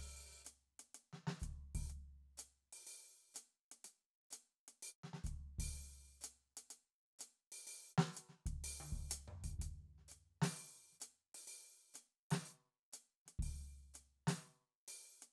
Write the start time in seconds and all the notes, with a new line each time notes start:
0.32 snare
0.44 closed hi-hat, hi-hat pedal
0.79 closed hi-hat
0.94 open hi-hat
1.13 snare
1.27 snare
1.39 kick, closed hi-hat, hi-hat pedal
1.75 kick, open hi-hat
1.90 open hi-hat
2.37 closed hi-hat, hi-hat pedal
2.73 open hi-hat
2.87 open hi-hat
3.34 closed hi-hat, hi-hat pedal
3.71 closed hi-hat
3.84 open hi-hat
4.30 closed hi-hat, hi-hat pedal
4.68 closed hi-hat
4.82 open hi-hat
5.03 snare
5.13 snare
5.24 kick, closed hi-hat, hi-hat pedal
5.58 kick, open hi-hat
5.75 open hi-hat
6.21 closed hi-hat, hi-hat pedal
6.57 open hi-hat
6.70 open hi-hat
7.19 closed hi-hat, hi-hat pedal
7.52 open hi-hat
7.67 open hi-hat
7.98 snare
8.13 closed hi-hat, hi-hat pedal
8.29 snare
8.46 kick, closed hi-hat
8.64 open hi-hat
8.80 high tom
8.92 kick
9.10 closed hi-hat, hi-hat pedal
9.28 floor tom
9.44 kick, open hi-hat
9.59 kick, open hi-hat
9.98 snare
10.08 closed hi-hat, hi-hat pedal
10.42 snare, open hi-hat
10.56 open hi-hat
10.92 snare
11.00 closed hi-hat, hi-hat pedal
11.34 open hi-hat
11.47 open hi-hat
11.94 closed hi-hat, hi-hat pedal
12.31 snare, open hi-hat
12.45 open hi-hat
12.93 closed hi-hat, hi-hat pedal
13.25 snare, closed hi-hat
13.39 kick, open hi-hat
13.94 closed hi-hat, hi-hat pedal
14.27 snare, open hi-hat
14.42 open hi-hat
14.88 hi-hat pedal, open hi-hat
15.22 closed hi-hat